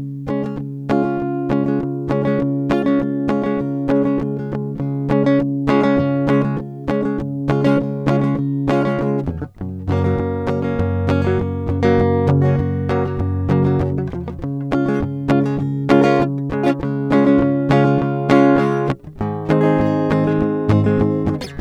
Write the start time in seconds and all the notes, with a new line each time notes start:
0.01 C#3 G#3
0.29 G#3 C#4
0.44 G#3 C#4 F4
0.57 C#3 G#3
0.91 G#3 C#4 F4
1.04 G#3 C#4
1.22 C#3 G#3
1.51 C#3 G#3 C#4
1.65 C#4
1.70 G#3
1.82 C#3 A3
2.10 C#3 G#3 C#4
2.23 C#4 F4
2.29 G#3
2.41 C#3 G#3
2.72 G#3 C#4 F4
2.84 C#4 F4
2.89 G#3
3.01 C#3 G#3
3.30 G#3 C#4 F4
3.44 C#4
3.48 G#3
3.61 C#3 G#3
3.89 C#3 G#3 C#4
4.06 G#3 C#4
4.14 F4
4.19 C#3 G#3
4.38 G#3
4.53 C#3 G#3
4.80 C#3 A3
5.10 C#3 G#3 C#4
5.26 G#3 C#4
5.41 C#3 G#3
5.69 C#3 G#3 C#4
5.73 F4
5.82 G#3 C#4 F4
5.99 C#3 G#3 C#4
6.28 C#3 G#3 C#4
6.43 G#3 C#4
6.58 C#3 G#3
6.89 C#3 G#3 C#4
7.03 C#4
7.07 G#3
7.20 C#3 A3
7.49 C#3 G#3 C#4
7.54 F4
7.63 C#4 F4
7.68 G#3
7.79 C#3
7.85 G#3
8.08 C#3 G#3 C#4 F4
8.22 G#3 C#4 F4
8.37 C#3 G#3
8.69 C#3 G#3 C#4
8.73 F4
8.83 F4
8.87 G#3 C#4
9.00 C#3 G#3
9.29 E2
9.60 F#2 B2
9.71 C#3
9.89 F#2 C#3 F#3
9.93 A#3 C#4
10.04 F#3 A#3 C#4
10.17 F#2 C#3
10.48 C#3 F#3 A#3 C#4
10.64 A#3 C#4
10.80 F#2 C#3
11.09 C#3 F#3 A#3 C#4
11.23 A#3 C#4
11.28 F#3
11.41 F#2 C#3 F#3
11.68 F#2 C#3 F#3
11.84 C#3 F#3 A#3
11.99 F#2 C#3 F#3
12.29 C#3 F#3 A#3 C#4
12.43 A#3 C#4 F#4
12.53 F#4
12.61 F#2 C#3
12.90 F#3 A#3 C#4
13.03 A#3 C#4
13.09 F#3
13.19 F#2 C#3 F#3
13.50 F#2 C#3 A#3 F#4
13.64 F#3 A#3 C#4
13.81 F#2 C#3 F#3
14.00 F#3
14.09 C#3
14.14 F3
14.31 F#3
14.44 C#3 G#3
14.73 G#3 C#4 F4
14.87 G#3 C#4
14.99 C#3 G#3
15.30 C#3 G#3 C#4 F4
15.43 C#4 F4
15.47 G#3
15.62 C#3 G#3 A#4
15.90 G#3 C#4 F4 A#4
16.02 C#4 F4 A#4
16.21 C#3 G3
16.51 C#3 G#3
16.65 C#4 F4
16.85 C#3 G#3
17.12 C#3 G#3 C#4
17.16 F4
17.26 C#4 F4
17.30 G#3
17.40 C#3 G#3
17.71 C#3 G#3 C#4 F4
17.86 G#3 C#4
18.01 C#3 G#3
18.31 G#3 C#4 F4
18.57 C#3 G#3
18.61 C#4
19.22 G#2 D#3
19.50 D#3 G#3 C4 D#4
19.62 D#3 C4 D#4 G#4
19.80 G#2 D#3
20.12 D#3 G#3 C4
20.26 G#3 C4
20.31 D#3
20.42 G#2 D#3
20.71 G#2 D#3 G#3 C4
20.76 D#4
20.86 D#3 G#3 C4
21.00 G#2 D#3 G#3
21.28 D#3 G#3
21.42 C#3 B3